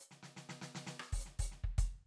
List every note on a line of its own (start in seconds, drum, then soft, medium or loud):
0.00 hi-hat pedal medium
0.11 snare soft
0.23 snare soft
0.37 snare soft
0.49 snare medium
0.62 snare medium
0.75 snare medium
0.87 snare medium
1.00 cross-stick medium
1.13 open hi-hat medium
1.13 kick soft
1.20 hi-hat pedal medium
1.26 snare soft
1.39 open hi-hat medium
1.39 kick soft
1.45 hi-hat pedal soft
1.52 snare soft
1.64 kick soft
1.78 open hi-hat medium
1.78 kick medium